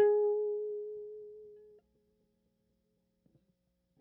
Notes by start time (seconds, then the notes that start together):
0.00 G#4